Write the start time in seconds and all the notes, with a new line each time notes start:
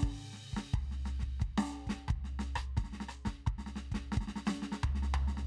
0.01 kick, cross-stick
0.06 crash
0.34 snare
0.54 kick, snare
0.74 kick, floor tom
0.92 snare
1.06 snare, hi-hat pedal
1.20 kick, snare
1.41 kick, snare
1.59 snare
1.71 snare, hi-hat pedal
1.88 kick, snare
2.09 kick, floor tom
2.25 snare
2.40 snare, hi-hat pedal
2.56 kick, cross-stick
2.78 kick, snare
2.85 snare
2.90 snare
2.93 snare
3.01 snare
3.09 cross-stick, hi-hat pedal
3.26 kick, snare
3.47 kick, floor tom
3.59 snare
3.67 snare
3.77 snare, hi-hat pedal
3.92 kick, snare
4.13 snare
4.18 kick, snare
4.28 snare
4.37 snare
4.46 snare, hi-hat pedal
4.56 kick
4.63 snare
4.73 snare
4.84 kick, floor tom
4.96 snare
5.03 snare
5.15 kick, floor tom
5.28 snare
5.38 snare